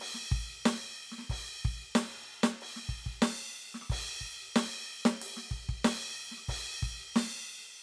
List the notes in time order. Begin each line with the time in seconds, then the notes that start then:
0.01 crash
0.15 snare
0.32 kick
0.66 snare, crash
0.74 snare
0.80 snare
1.12 snare
1.19 snare
1.22 snare
1.24 snare
1.30 kick, crash
1.65 kick
1.96 snare, crash
2.11 snare
2.44 snare
2.62 crash
2.77 snare
2.89 kick
3.07 kick
3.22 snare, crash
3.75 snare
3.82 cross-stick
3.85 cross-stick
3.90 kick, crash
4.21 kick
4.56 snare, crash
5.06 snare
5.22 crash
5.37 snare
5.51 kick
5.69 kick
5.85 snare, crash
6.32 snare
6.38 cross-stick
6.49 kick, crash
6.83 kick
7.16 snare, crash